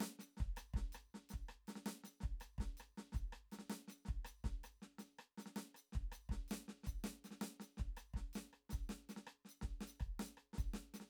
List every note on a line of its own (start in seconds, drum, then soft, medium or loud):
0.01 snare medium
0.19 snare soft
0.19 hi-hat pedal soft
0.37 snare soft
0.40 kick soft
0.40 snare soft
0.57 cross-stick medium
0.57 hi-hat pedal soft
0.74 kick soft
0.74 snare soft
0.93 cross-stick medium
0.93 hi-hat pedal soft
1.15 snare soft
1.30 snare soft
1.30 hi-hat pedal soft
1.34 kick soft
1.49 cross-stick medium
1.68 snare soft
1.68 hi-hat pedal soft
1.76 snare soft
1.86 snare medium
2.04 snare soft
2.04 hi-hat pedal soft
2.21 kick soft
2.21 snare soft
2.41 cross-stick medium
2.41 hi-hat pedal soft
2.59 kick soft
2.59 snare soft
2.78 cross-stick soft
2.78 hi-hat pedal soft
2.98 snare soft
3.13 kick soft
3.13 snare soft
3.13 hi-hat pedal soft
3.33 cross-stick medium
3.52 snare soft
3.52 hi-hat pedal soft
3.59 snare soft
3.70 snare medium
3.88 snare soft
3.88 hi-hat pedal soft
4.06 kick soft
4.06 snare soft
4.25 cross-stick medium
4.25 hi-hat pedal soft
4.45 kick soft
4.45 snare soft
4.64 cross-stick soft
4.64 hi-hat pedal soft
4.82 snare soft
4.99 snare soft
4.99 hi-hat pedal soft
5.19 cross-stick medium
5.38 snare soft
5.38 hi-hat pedal soft
5.46 snare soft
5.56 snare medium
5.75 cross-stick soft
5.75 hi-hat pedal soft
5.93 kick soft
5.93 snare soft
6.12 cross-stick medium
6.12 hi-hat pedal soft
6.30 kick soft
6.30 snare soft
6.49 snare medium
6.49 hi-hat pedal soft
6.69 snare soft
6.84 kick soft
6.84 snare soft
6.84 hi-hat pedal soft
7.04 snare medium
7.25 snare soft
7.25 hi-hat pedal soft
7.31 snare soft
7.42 snare medium
7.60 snare soft
7.60 hi-hat pedal soft
7.78 kick soft
7.78 snare soft
7.97 cross-stick medium
7.97 hi-hat pedal soft
8.14 kick soft
8.14 snare soft
8.34 snare medium
8.34 hi-hat pedal soft
8.53 cross-stick soft
8.70 snare soft
8.70 hi-hat pedal soft
8.72 kick soft
8.72 snare soft
8.90 snare medium
9.09 snare soft
9.09 hi-hat pedal soft
9.17 snare soft
9.27 cross-stick medium
9.45 snare soft
9.49 hi-hat pedal soft
9.62 kick soft
9.62 snare soft
9.81 snare medium
9.88 hi-hat pedal soft
10.00 kick soft
10.00 cross-stick soft
10.20 snare medium
10.25 hi-hat pedal soft
10.38 cross-stick soft
10.54 snare soft
10.55 kick soft
10.55 snare soft
10.55 hi-hat pedal soft
10.74 snare medium
10.94 snare soft
10.94 hi-hat pedal soft
11.00 snare soft